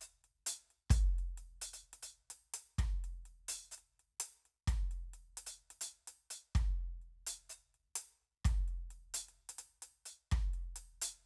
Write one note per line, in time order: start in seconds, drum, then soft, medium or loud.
0.01 closed hi-hat soft
0.01 hi-hat pedal medium
0.24 closed hi-hat soft
0.46 closed hi-hat loud
0.71 closed hi-hat soft
0.90 closed hi-hat medium
0.90 kick medium
0.90 cross-stick soft
1.19 closed hi-hat soft
1.38 closed hi-hat soft
1.62 closed hi-hat medium
1.73 closed hi-hat medium
1.93 closed hi-hat soft
2.03 closed hi-hat medium
2.30 closed hi-hat medium
2.54 closed hi-hat medium
2.79 kick medium
2.79 cross-stick medium
2.79 closed hi-hat soft
3.04 closed hi-hat soft
3.26 closed hi-hat soft
3.48 open hi-hat loud
3.71 hi-hat pedal medium
3.78 closed hi-hat soft
4.00 closed hi-hat soft
4.20 closed hi-hat loud
4.46 closed hi-hat soft
4.68 kick medium
4.68 cross-stick medium
4.68 closed hi-hat medium
4.91 closed hi-hat soft
5.14 closed hi-hat soft
5.37 closed hi-hat medium
5.47 closed hi-hat medium
5.71 closed hi-hat soft
5.81 closed hi-hat medium
6.08 closed hi-hat medium
6.30 closed hi-hat medium
6.55 kick medium
6.55 cross-stick medium
6.55 closed hi-hat soft
7.02 closed hi-hat soft
7.27 closed hi-hat loud
7.50 hi-hat pedal medium
7.74 closed hi-hat soft
7.96 closed hi-hat loud
8.45 kick medium
8.45 cross-stick medium
8.45 closed hi-hat medium
8.68 closed hi-hat soft
8.91 closed hi-hat soft
9.14 closed hi-hat loud
9.29 closed hi-hat soft
9.49 closed hi-hat medium
9.59 closed hi-hat medium
9.82 closed hi-hat medium
10.06 closed hi-hat medium
10.32 kick medium
10.32 cross-stick medium
10.32 closed hi-hat soft
10.54 closed hi-hat soft
10.76 closed hi-hat medium
11.02 closed hi-hat loud